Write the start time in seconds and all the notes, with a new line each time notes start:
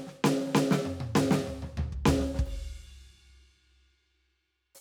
0.07 snare
0.25 snare
0.41 snare
0.47 snare
0.55 snare
0.72 snare
0.86 mid tom
1.01 high tom
1.16 snare
1.31 snare
1.48 floor tom
1.63 floor tom
1.78 floor tom
1.93 kick
2.06 snare, floor tom
2.21 snare
2.35 snare, high tom
2.40 kick
2.46 crash
4.75 hi-hat pedal